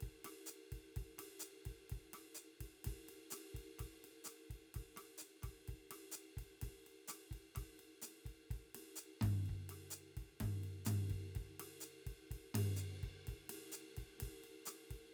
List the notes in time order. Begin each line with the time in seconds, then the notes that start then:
0.01 kick, ride
0.08 kick
0.25 cross-stick, ride
0.46 hi-hat pedal, ride
0.72 kick, ride
0.96 kick, ride
1.02 kick
1.19 cross-stick, ride
1.40 hi-hat pedal, ride
1.66 kick, ride
1.72 kick
1.90 kick, ride
1.97 kick
2.13 cross-stick, ride
2.35 hi-hat pedal, ride
2.61 kick, ride
2.85 kick, snare, ride
2.92 kick
3.09 ride
3.31 cross-stick, snare, hi-hat pedal, ride
3.55 kick, ride
3.79 kick, cross-stick, ride
3.86 kick
4.05 ride
4.25 cross-stick, snare, hi-hat pedal, ride
4.50 kick, ride
4.75 kick, cross-stick, ride
4.81 kick
4.97 cross-stick, ride
5.18 hi-hat pedal
5.22 ride
5.43 kick, cross-stick, ride
5.49 kick
5.68 kick, ride
5.74 kick
5.91 cross-stick, ride
6.12 hi-hat pedal, ride
6.37 kick, ride
6.42 kick
6.62 kick, snare, ride
6.68 kick
6.87 ride
7.08 cross-stick, hi-hat pedal, ride
7.31 kick, ride
7.55 kick, cross-stick, snare, ride
7.63 kick
7.80 ride
8.02 snare, hi-hat pedal, ride
8.26 kick, ride
8.51 kick, ride
8.56 kick
8.75 snare, ride
8.96 hi-hat pedal, ride
9.21 kick, floor tom, ride
9.29 kick
9.46 kick, ride
9.54 kick
9.70 cross-stick, ride
9.91 hi-hat pedal, ride
10.17 kick, ride
10.22 kick
10.40 kick, floor tom, ride
10.47 kick
10.64 ride
10.85 floor tom, hi-hat pedal, ride
11.10 kick, ride
11.15 kick, snare
11.35 kick, ride
11.42 kick
11.60 cross-stick, snare, ride
11.81 hi-hat pedal, ride
12.07 kick, ride
12.31 kick, ride
12.36 kick
12.55 floor tom, ride
12.77 hi-hat pedal, ride
12.89 snare
13.03 kick, ride
13.08 kick
13.27 kick, ride
13.33 kick
13.49 snare, ride
13.72 hi-hat pedal, ride
13.97 kick, ride
14.03 kick
14.19 kick, snare, ride
14.28 kick
14.44 ride
14.66 cross-stick, snare, hi-hat pedal, ride
14.91 kick, ride